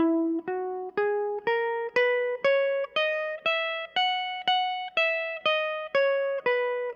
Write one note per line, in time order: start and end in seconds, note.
0.00 0.44 E4
0.49 0.93 F#4
0.98 1.42 G#4
1.48 1.92 A#4
1.97 2.39 B4
2.45 2.87 C#5
2.97 3.41 D#5
3.47 3.89 E5
3.97 4.46 F#5
4.48 4.91 F#5
4.98 5.43 E5
5.46 5.89 D#5
5.95 6.42 C#5
6.47 6.94 B4